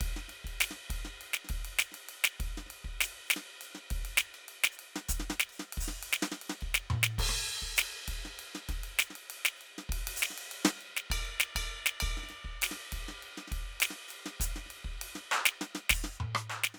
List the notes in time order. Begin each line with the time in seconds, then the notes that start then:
0.01 kick, hi-hat pedal, ride
0.08 kick
0.17 snare
0.29 snare, ride
0.45 kick, ride
0.61 snare, hi-hat pedal, ride
0.71 snare
0.90 kick, ride
0.97 kick
1.05 snare
1.21 hi-hat pedal, ride
1.34 snare
1.45 snare
1.49 kick, ride
1.57 kick
1.65 ride
1.79 snare, hi-hat pedal
1.92 snare, ride
2.09 ride
2.24 snare
2.40 kick, ride
2.47 kick
2.58 snare
2.67 snare, ride
2.85 kick
3.01 snare, hi-hat pedal, ride
3.27 snare, hi-hat pedal, ride
3.36 snare
3.61 hi-hat pedal, ride
3.75 snare
3.91 kick, ride
3.98 kick
4.05 ride
4.18 snare, hi-hat pedal
4.34 ride bell
4.49 ride
4.64 snare
4.72 hi-hat pedal
4.79 ride
4.96 snare
5.09 kick, hi-hat pedal, ride
5.17 kick, snare
5.40 snare
5.50 hi-hat pedal, ride bell
5.60 snare
5.73 ride
5.78 kick, hi-hat pedal
5.84 kick, snare
6.03 ride
6.13 snare
6.23 snare
6.32 snare
6.42 ride
6.50 snare
6.61 kick, ride bell
6.71 kick, snare
6.90 mid tom
7.03 snare
7.19 kick, crash
7.26 kick, cross-stick
7.62 kick
7.77 snare, hi-hat pedal, ride
8.08 kick, ride
8.25 snare
8.39 ride
8.55 snare
8.69 kick, snare, ride
8.76 kick
8.84 ride
8.99 snare, hi-hat pedal
9.11 snare
9.16 ride
9.30 ride
9.45 snare
9.56 hi-hat pedal
9.61 ride
9.78 snare
9.89 kick, ride
9.97 kick, snare
10.07 ride
10.17 hi-hat pedal
10.22 snare
10.31 snare
10.38 ride
10.52 ride
10.65 snare
10.79 hi-hat pedal, ride
10.97 snare
11.10 kick, hi-hat pedal, ride bell
11.17 kick
11.25 ride
11.40 snare
11.56 kick, ride bell
11.86 snare
12.01 kick, hi-hat pedal, ride bell
12.11 kick
12.17 snare
12.24 snare
12.29 snare, ride
12.45 kick
12.62 snare, hi-hat pedal, ride
12.71 snare
12.93 kick, ride
12.99 kick
13.09 snare
13.23 ride
13.38 snare
13.52 kick, ride
13.59 kick
13.80 snare, hi-hat pedal, ride
13.91 snare
14.09 hi-hat pedal, ride
14.26 snare
14.40 kick, hi-hat pedal, ride
14.47 kick
14.56 snare
14.71 ride
14.77 snare
14.85 kick, snare
14.91 kick
15.02 ride
15.16 snare
15.31 percussion
15.46 snare
15.61 snare
15.75 snare
15.90 kick, snare, hi-hat pedal
16.04 snare
16.20 mid tom
16.35 cross-stick
16.50 percussion
16.64 snare
16.75 snare